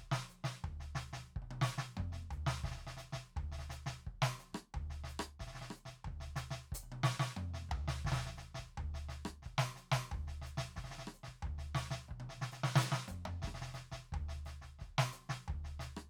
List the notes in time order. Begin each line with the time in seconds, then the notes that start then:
0.12 snare
0.28 snare, hi-hat pedal
0.43 kick, snare
0.64 kick, floor tom
0.80 snare
0.95 snare
1.00 hi-hat pedal
1.13 kick, snare
1.36 kick
1.42 high tom
1.51 high tom
1.61 snare
1.67 hi-hat pedal
1.78 snare
1.97 kick, mid tom
2.12 snare
2.31 floor tom, hi-hat pedal
2.46 snare
2.64 kick, snare
2.71 snare
2.78 snare
2.87 snare
2.99 hi-hat pedal
3.12 kick, snare
3.36 kick, floor tom
3.52 snare
3.59 snare
3.70 snare, hi-hat pedal
3.86 kick, snare
4.07 kick
4.22 snare
4.39 snare, hi-hat pedal
4.53 kick, cross-stick
4.74 kick, floor tom
4.90 snare
5.04 snare
5.09 hi-hat pedal
5.19 kick, cross-stick
5.39 kick, snare
5.47 snare
5.52 snare
5.55 snare
5.61 snare
5.70 cross-stick
5.75 hi-hat pedal
5.85 kick, snare
6.04 kick, floor tom
6.20 snare
6.36 snare, hi-hat pedal
6.51 snare
6.72 kick, hi-hat pedal
6.81 kick, high tom
6.92 high tom
7.03 snare
7.20 snare
7.37 mid tom
7.54 snare
7.69 kick, floor tom
7.88 snare
8.05 kick, snare
8.12 snare
8.19 snare
8.26 snare
8.36 snare, hi-hat pedal
8.54 snare
8.59 kick
8.77 kick, floor tom
8.94 snare
9.09 snare, hi-hat pedal
9.25 kick, cross-stick
9.42 kick, snare
9.58 snare
9.75 snare, hi-hat pedal
9.92 kick, snare
10.11 kick, floor tom
10.27 snare
10.42 snare
10.46 hi-hat pedal
10.57 kick, snare
10.76 kick, snare
10.84 snare
10.89 snare
10.91 snare
10.98 snare
11.07 cross-stick
11.14 hi-hat pedal
11.23 snare
11.28 kick
11.42 floor tom
11.47 kick
11.58 snare
11.75 snare, hi-hat pedal
11.91 snare
12.08 kick, high tom
12.20 high tom
12.29 snare
12.41 snare
12.51 snare, hi-hat pedal
12.63 snare
12.76 snare
12.81 hi-hat pedal
12.92 snare
13.08 kick, hi-hat pedal, mid tom
13.25 mid tom
13.42 kick, snare
13.47 cross-stick
13.52 cross-stick, snare
13.61 snare
13.68 snare
13.74 snare, hi-hat pedal
13.92 kick, snare
14.12 kick, floor tom
14.29 snare
14.45 snare, hi-hat pedal
14.62 kick, snare
14.79 kick, snare
14.98 snare
15.12 snare, hi-hat pedal
15.29 kick, snare
15.48 kick, floor tom
15.64 snare
15.79 snare, hi-hat pedal
15.97 cross-stick